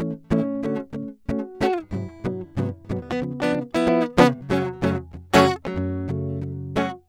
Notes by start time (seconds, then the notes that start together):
0.00 E3 A3 C#4
0.32 E3 A3 C#4 E4
0.64 D3 A3 C#4 F#4
0.94 D3 A3 C#4
1.29 C#3 A3 C#4 F#4
1.62 A3 C#4 F#4
1.92 G#2 F#3
2.21 G#2
2.26 F#3 B3 D4
2.58 G#2 F#3 B3 D4
2.90 G#2 F#3 B3
3.13 B3
3.23 C#3 F3 B3
3.43 F3 B3 D4
3.54 C#3 F3 B3
3.75 F3 B3 E4
3.88 F3 B3 E4
4.18 C#3 F3 B3 D4
4.50 F#2 C#3 F#3 G#3 C#4 F#4
4.83 F#2 C#3 F#3 A3 C#4 F#4
5.14 F2
5.34 F#2 C#3 F#3 A3 C#4 F#4
5.66 F#3 A3 C#4
5.78 F#2
6.08 F#2 C#3 F#3 A3
6.42 C#3 F#3
6.77 F#3 A3 C#4 F#4